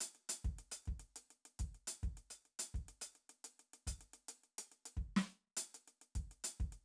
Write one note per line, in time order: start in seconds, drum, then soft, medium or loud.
0.01 closed hi-hat loud
0.15 closed hi-hat soft
0.29 closed hi-hat loud
0.45 kick soft
0.45 closed hi-hat soft
0.59 closed hi-hat soft
0.72 closed hi-hat medium
0.86 kick soft
0.86 closed hi-hat soft
1.00 closed hi-hat soft
1.16 closed hi-hat medium
1.31 closed hi-hat soft
1.46 closed hi-hat soft
1.60 kick soft
1.60 closed hi-hat medium
1.75 closed hi-hat soft
1.88 closed hi-hat loud
2.03 kick soft
2.03 closed hi-hat soft
2.17 closed hi-hat soft
2.31 closed hi-hat medium
2.46 closed hi-hat soft
2.59 closed hi-hat loud
2.74 kick soft
2.74 closed hi-hat soft
2.89 closed hi-hat soft
3.02 closed hi-hat medium
3.15 closed hi-hat soft
3.30 closed hi-hat soft
3.45 closed hi-hat medium
3.60 closed hi-hat soft
3.74 closed hi-hat soft
3.87 closed hi-hat medium
3.87 kick soft
4.01 closed hi-hat soft
4.14 closed hi-hat soft
4.29 closed hi-hat medium
4.44 closed hi-hat soft
4.59 closed hi-hat medium
4.72 closed hi-hat soft
4.86 closed hi-hat medium
4.97 kick soft
5.02 closed hi-hat soft
5.17 snare loud
5.30 closed hi-hat soft
5.57 closed hi-hat loud
5.75 closed hi-hat medium
5.88 closed hi-hat soft
6.02 closed hi-hat soft
6.15 kick soft
6.15 closed hi-hat medium
6.32 closed hi-hat soft
6.44 closed hi-hat loud
6.60 kick soft
6.60 closed hi-hat soft
6.73 closed hi-hat soft